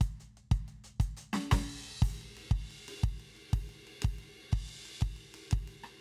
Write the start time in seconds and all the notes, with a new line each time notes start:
0.01 kick, closed hi-hat
0.20 closed hi-hat
0.37 closed hi-hat
0.52 closed hi-hat, kick
0.68 closed hi-hat
0.84 closed hi-hat
1.00 kick, closed hi-hat
1.17 closed hi-hat
1.33 snare
1.52 kick, snare, crash
2.02 open hi-hat, kick, ride
2.22 ride
2.37 ride
2.51 kick, ride
2.71 ride
2.88 ride
3.04 kick, ride
3.20 ride
3.37 ride
3.53 kick, ride
3.69 ride
3.87 ride
4.02 kick, ride
4.19 ride
4.52 kick, ride
4.69 ride
4.86 ride
5.01 kick, ride
5.17 ride
5.34 ride
5.51 kick, ride
5.68 ride
5.84 cross-stick